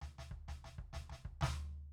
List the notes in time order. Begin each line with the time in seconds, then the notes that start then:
0.03 snare, floor tom
0.20 snare, floor tom
0.33 kick
0.49 snare, floor tom
0.66 snare, floor tom
0.80 kick
0.94 snare, floor tom
1.11 snare, floor tom
1.26 kick
1.43 snare, floor tom